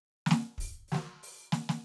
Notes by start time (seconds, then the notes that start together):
0.27 snare
0.32 snare
0.59 open hi-hat, kick
0.89 snare, hi-hat pedal
0.95 snare
1.24 open hi-hat
1.53 snare
1.70 snare